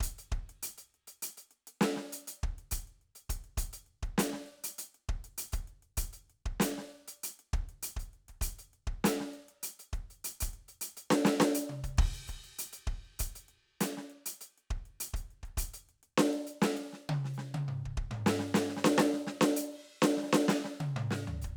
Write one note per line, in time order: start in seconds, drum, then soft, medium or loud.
0.01 closed hi-hat loud
0.01 kick medium
0.19 closed hi-hat medium
0.32 kick medium
0.32 closed hi-hat soft
0.50 closed hi-hat soft
0.63 closed hi-hat loud
0.78 closed hi-hat medium
0.95 closed hi-hat soft
1.08 closed hi-hat medium
1.23 closed hi-hat loud
1.38 closed hi-hat medium
1.52 closed hi-hat soft
1.68 closed hi-hat medium
1.81 snare loud
1.97 snare medium
2.13 closed hi-hat loud
2.28 closed hi-hat loud
2.44 kick medium
2.44 closed hi-hat soft
2.59 closed hi-hat soft
2.72 closed hi-hat loud
2.72 kick medium
2.88 closed hi-hat soft
3.02 closed hi-hat soft
3.16 closed hi-hat medium
3.30 kick medium
3.30 closed hi-hat loud
3.45 closed hi-hat soft
3.58 closed hi-hat loud
3.58 kick medium
3.74 closed hi-hat medium
3.87 closed hi-hat soft
4.03 kick medium
4.03 closed hi-hat soft
4.19 closed hi-hat loud
4.19 snare loud
4.34 snare soft
4.47 closed hi-hat soft
4.65 closed hi-hat loud
4.79 closed hi-hat loud
4.95 closed hi-hat soft
5.09 kick medium
5.09 closed hi-hat soft
5.25 closed hi-hat medium
5.38 closed hi-hat loud
5.53 closed hi-hat medium
5.53 kick medium
5.68 closed hi-hat soft
5.83 closed hi-hat soft
5.98 closed hi-hat loud
5.98 kick medium
6.13 closed hi-hat medium
6.30 closed hi-hat soft
6.46 kick medium
6.61 closed hi-hat loud
6.61 snare loud
6.79 snare soft
6.93 closed hi-hat soft
7.08 closed hi-hat medium
7.24 closed hi-hat loud
7.40 closed hi-hat soft
7.54 kick medium
7.54 closed hi-hat soft
7.70 closed hi-hat soft
7.83 closed hi-hat loud
7.97 closed hi-hat medium
7.97 kick medium
8.14 closed hi-hat soft
8.29 kick soft
8.29 closed hi-hat soft
8.42 closed hi-hat loud
8.42 kick medium
8.59 closed hi-hat medium
8.74 closed hi-hat soft
8.88 kick medium
9.05 closed hi-hat loud
9.05 snare loud
9.21 snare soft
9.34 closed hi-hat soft
9.49 closed hi-hat soft
9.64 closed hi-hat loud
9.80 closed hi-hat medium
9.94 kick medium
9.94 closed hi-hat soft
10.11 closed hi-hat soft
10.25 closed hi-hat loud
10.41 closed hi-hat loud
10.41 kick medium
10.54 closed hi-hat soft
10.69 closed hi-hat soft
10.82 closed hi-hat loud
10.97 closed hi-hat medium
11.11 snare loud
11.26 snare loud
11.41 snare loud
11.55 closed hi-hat loud
11.70 high tom medium
11.84 closed hi-hat medium
11.84 kick medium
11.98 kick loud
11.98 crash medium
12.14 closed hi-hat soft
12.28 closed hi-hat soft
12.28 kick soft
12.44 closed hi-hat soft
12.59 closed hi-hat loud
12.73 closed hi-hat medium
12.88 kick medium
12.88 closed hi-hat soft
13.05 closed hi-hat soft
13.20 closed hi-hat loud
13.20 kick medium
13.36 closed hi-hat medium
13.49 closed hi-hat soft
13.81 closed hi-hat loud
13.81 snare loud
13.98 snare soft
14.10 closed hi-hat soft
14.27 closed hi-hat loud
14.42 closed hi-hat medium
14.58 closed hi-hat soft
14.70 kick medium
14.70 closed hi-hat soft
14.86 closed hi-hat soft
15.01 closed hi-hat loud
15.14 closed hi-hat medium
15.14 kick medium
15.31 closed hi-hat soft
15.44 kick soft
15.44 closed hi-hat soft
15.58 closed hi-hat loud
15.58 kick medium
15.74 closed hi-hat medium
15.89 closed hi-hat soft
16.04 closed hi-hat soft
16.18 snare loud
16.34 closed hi-hat soft
16.48 closed hi-hat medium
16.62 snare loud
16.77 closed hi-hat medium
16.93 snare soft
17.10 high tom loud
17.25 snare soft
17.34 hi-hat pedal soft
17.39 snare soft
17.55 high tom loud
17.69 mid tom medium
17.86 kick soft
17.98 kick medium
18.12 mid tom loud
18.27 snare loud
18.40 snare medium
18.55 snare loud
18.70 snare soft
18.77 snare medium
18.85 snare loud
18.98 snare loud
19.14 snare soft
19.27 snare medium
19.42 snare loud
19.57 closed hi-hat loud
19.72 crash soft
20.03 snare loud
20.18 snare soft
20.23 snare soft
20.28 snare soft
20.33 snare loud
20.49 snare loud
20.65 snare medium
20.81 high tom loud
20.97 mid tom loud
21.11 snare medium
21.28 floor tom medium
21.42 closed hi-hat medium
21.42 kick soft